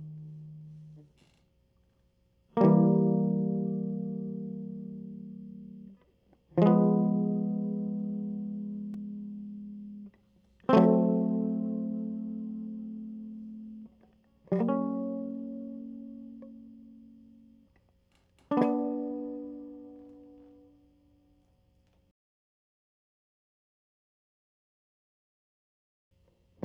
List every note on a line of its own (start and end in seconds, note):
2.57 5.97 G3
2.57 5.91 A#3
2.65 5.93 E3
6.62 6.71 E3
6.62 10.10 G#3
6.62 10.09 B3
6.71 10.21 F3
10.69 13.94 C4
10.74 10.83 F#3
10.74 13.91 A3
10.82 12.09 F3
12.09 14.29 F#3
14.56 16.42 F#3
14.61 17.69 A#3
14.69 17.72 C#4
18.52 21.52 D4
18.63 21.01 A#3